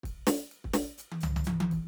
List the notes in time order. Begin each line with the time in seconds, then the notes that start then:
0.03 kick, ride
0.27 snare, ride
0.51 ride
0.64 kick
0.74 snare, ride
0.98 hi-hat pedal, ride
1.12 high tom
1.21 floor tom, hi-hat pedal
1.36 floor tom
1.44 hi-hat pedal, high tom
1.60 high tom
1.71 kick, ride